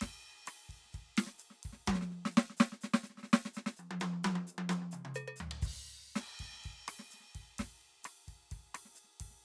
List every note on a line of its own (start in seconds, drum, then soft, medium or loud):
0.01 kick soft
0.01 snare medium
0.01 hi-hat pedal soft
0.01 ride medium
0.07 kick soft
0.23 ride soft
0.46 cross-stick medium
0.46 hi-hat pedal medium
0.46 ride medium
0.69 kick soft
0.69 ride soft
0.85 snare soft
0.92 kick soft
0.92 hi-hat pedal soft
0.92 ride soft
1.17 snare medium
1.17 ride medium
1.26 snare soft
1.38 hi-hat pedal medium
1.38 ride soft
1.50 snare soft
1.63 kick soft
1.63 ride medium
1.73 snare soft
1.86 kick soft
1.86 hi-hat pedal medium
1.86 high tom loud
1.95 snare soft
2.01 snare soft
2.25 snare medium
2.31 hi-hat pedal soft
2.37 snare loud
2.50 snare soft
2.57 snare loud
2.57 hi-hat pedal medium
2.72 snare soft
2.81 snare medium
2.81 hi-hat pedal medium
2.94 snare loud
3.03 snare soft
3.03 hi-hat pedal medium
3.10 snare soft
3.15 snare soft
3.17 snare soft
3.23 snare soft
3.28 hi-hat pedal soft
3.33 snare loud
3.45 snare soft
3.53 snare soft
3.53 hi-hat pedal medium
3.66 snare medium
3.76 hi-hat pedal medium
3.76 high tom soft
3.91 high tom medium
4.00 hi-hat pedal medium
4.00 high tom loud
4.13 high tom soft
4.24 hi-hat pedal medium
4.24 high tom loud
4.35 high tom medium
4.47 hi-hat pedal medium
4.58 high tom loud
4.69 hi-hat pedal medium
4.69 high tom loud
4.82 high tom soft
4.91 hi-hat pedal medium
4.91 mid tom medium
5.05 mid tom medium
5.14 hi-hat pedal medium
5.14 percussion loud
5.28 percussion loud
5.36 hi-hat pedal medium
5.40 floor tom medium
5.51 floor tom loud
5.62 kick medium
5.62 hi-hat pedal medium
5.62 crash medium
6.15 snare medium
6.15 hi-hat pedal medium
6.15 ride medium
6.39 kick soft
6.39 snare soft
6.39 ride medium
6.45 kick soft
6.50 snare soft
6.53 snare soft
6.55 snare soft
6.59 snare soft
6.59 hi-hat pedal soft
6.64 kick soft
6.64 ride soft
6.70 kick soft
6.88 cross-stick medium
6.88 ride loud
6.99 snare soft
7.10 snare soft
7.10 hi-hat pedal medium
7.10 ride soft
7.20 snare soft
7.23 snare soft
7.35 kick soft
7.35 ride medium
7.40 kick soft
7.58 kick soft
7.58 snare medium
7.58 hi-hat pedal soft
7.58 ride medium
7.64 kick soft
7.81 ride soft
8.03 cross-stick medium
8.03 hi-hat pedal medium
8.03 ride medium
8.28 kick soft
8.28 ride soft
8.50 kick soft
8.50 hi-hat pedal soft
8.50 ride medium
8.74 cross-stick medium
8.74 ride medium
8.85 snare soft
8.95 hi-hat pedal medium
9.04 snare soft
9.20 kick soft
9.20 ride medium
9.26 kick soft
9.30 snare soft